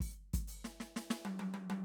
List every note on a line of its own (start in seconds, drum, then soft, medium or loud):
0.00 kick soft
0.00 open hi-hat medium
0.11 hi-hat pedal soft
0.34 open hi-hat medium
0.34 kick medium
0.48 hi-hat pedal medium
0.64 snare medium
0.80 snare medium
0.96 snare medium
1.10 snare medium
1.25 high tom medium
1.39 high tom medium
1.54 high tom medium
1.70 high tom loud